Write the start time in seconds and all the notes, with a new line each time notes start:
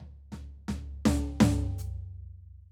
0.00 floor tom
0.32 snare, floor tom
0.68 snare, floor tom
1.05 snare, floor tom
1.40 snare, floor tom
1.78 hi-hat pedal